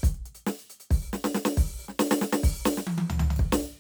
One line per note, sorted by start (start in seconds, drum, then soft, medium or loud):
0.01 closed hi-hat loud
0.01 kick loud
0.01 hi-hat pedal soft
0.15 closed hi-hat soft
0.26 closed hi-hat medium
0.35 closed hi-hat medium
0.47 snare loud
0.59 closed hi-hat medium
0.70 closed hi-hat medium
0.91 open hi-hat medium
0.91 kick loud
1.08 hi-hat pedal soft
1.14 snare loud
1.25 snare loud
1.35 snare loud
1.46 snare loud
1.58 open hi-hat loud
1.58 kick loud
1.68 open hi-hat medium
1.79 open hi-hat medium
1.84 hi-hat pedal soft
1.89 snare medium
2.00 snare loud
2.12 snare loud
2.22 snare loud
2.33 snare loud
2.44 open hi-hat loud
2.44 kick loud
2.66 snare loud
2.78 snare loud
2.85 kick soft
2.85 high tom loud
2.99 high tom loud
3.11 floor tom loud
3.20 floor tom loud
3.31 floor tom loud
3.31 ride soft
3.37 kick loud
3.37 ride medium
3.53 snare loud